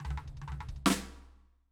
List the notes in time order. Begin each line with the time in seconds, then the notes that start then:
0.00 closed hi-hat, high tom
0.05 floor tom
0.10 high tom
0.17 floor tom
0.27 kick
0.37 kick
0.42 high tom
0.48 floor tom
0.52 high tom
0.61 floor tom
0.69 kick
0.76 kick
0.86 snare
0.90 snare